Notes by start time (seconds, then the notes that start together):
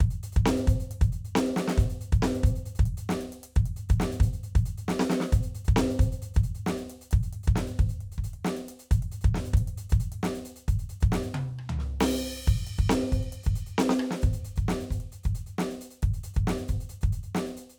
0.01 kick, closed hi-hat
0.11 closed hi-hat
0.24 closed hi-hat
0.33 closed hi-hat, kick
0.46 snare
0.57 closed hi-hat
0.68 closed hi-hat, kick
0.81 closed hi-hat
0.92 closed hi-hat
1.02 closed hi-hat, kick
1.13 closed hi-hat
1.25 closed hi-hat
1.36 snare
1.47 closed hi-hat
1.57 snare
1.68 snare
1.78 closed hi-hat, kick
1.90 closed hi-hat
2.01 closed hi-hat
2.13 closed hi-hat, kick
2.23 snare
2.35 closed hi-hat
2.44 closed hi-hat, kick
2.66 closed hi-hat
2.76 closed hi-hat
2.80 kick
2.86 closed hi-hat
2.98 closed hi-hat
3.10 snare
3.21 closed hi-hat
3.33 closed hi-hat
3.44 closed hi-hat
3.56 kick, closed hi-hat
3.66 closed hi-hat
3.77 closed hi-hat
3.90 closed hi-hat, kick
4.01 snare
4.12 closed hi-hat
4.21 closed hi-hat, kick
4.34 closed hi-hat
4.44 closed hi-hat
4.56 closed hi-hat, kick
4.66 closed hi-hat
4.78 closed hi-hat
4.89 snare
5.00 snare
5.10 snare
5.21 snare
5.33 closed hi-hat, kick
5.44 closed hi-hat
5.55 closed hi-hat
5.65 closed hi-hat, kick
5.77 snare
5.91 closed hi-hat
6.00 closed hi-hat, kick
6.13 closed hi-hat
6.22 closed hi-hat
6.35 closed hi-hat, kick
6.44 closed hi-hat
6.55 closed hi-hat
6.67 snare
6.78 closed hi-hat
6.90 closed hi-hat
7.02 closed hi-hat
7.12 kick, closed hi-hat
7.24 closed hi-hat
7.33 closed hi-hat
7.44 closed hi-hat
7.48 kick
7.56 snare
7.67 closed hi-hat
7.80 kick, closed hi-hat
7.90 closed hi-hat
8.01 closed hi-hat
8.12 closed hi-hat
8.19 kick
8.25 closed hi-hat
8.34 closed hi-hat
8.45 snare
8.57 closed hi-hat
8.69 closed hi-hat
8.80 closed hi-hat
8.92 closed hi-hat, kick
9.03 closed hi-hat
9.12 closed hi-hat
9.22 closed hi-hat, kick
9.35 snare
9.46 closed hi-hat
9.54 kick, closed hi-hat
9.68 closed hi-hat
9.78 closed hi-hat
9.90 closed hi-hat, kick
10.01 closed hi-hat
10.12 closed hi-hat
10.24 snare
10.35 closed hi-hat
10.46 closed hi-hat
10.57 closed hi-hat
10.69 closed hi-hat, kick
10.80 closed hi-hat
10.90 closed hi-hat
11.01 closed hi-hat, kick
11.13 snare
11.24 closed hi-hat
11.35 high tom
11.46 snare
11.59 cross-stick
11.70 floor tom
11.79 snare
12.01 snare, crash
12.38 closed hi-hat
12.47 closed hi-hat, kick
12.58 closed hi-hat
12.67 closed hi-hat
12.78 closed hi-hat, kick
12.90 snare
13.13 closed hi-hat, kick
13.23 closed hi-hat
13.33 closed hi-hat
13.44 closed hi-hat, kick
13.56 closed hi-hat
13.67 closed hi-hat
13.79 snare
13.90 snare
14.00 cross-stick
14.11 snare
14.22 closed hi-hat, kick
14.34 closed hi-hat
14.45 closed hi-hat
14.56 closed hi-hat, kick
14.69 snare
14.81 closed hi-hat
14.91 closed hi-hat, kick
15.01 closed hi-hat
15.13 closed hi-hat
15.24 closed hi-hat, kick
15.35 closed hi-hat
15.47 closed hi-hat
15.59 snare
15.71 closed hi-hat
15.82 closed hi-hat
15.91 closed hi-hat
16.03 kick, closed hi-hat
16.14 closed hi-hat
16.24 closed hi-hat
16.34 closed hi-hat, kick
16.48 snare
16.58 closed hi-hat
16.69 closed hi-hat, kick
16.81 closed hi-hat
16.90 closed hi-hat
17.02 closed hi-hat, kick
17.13 closed hi-hat
17.24 closed hi-hat
17.35 snare
17.47 closed hi-hat
17.57 closed hi-hat
17.70 closed hi-hat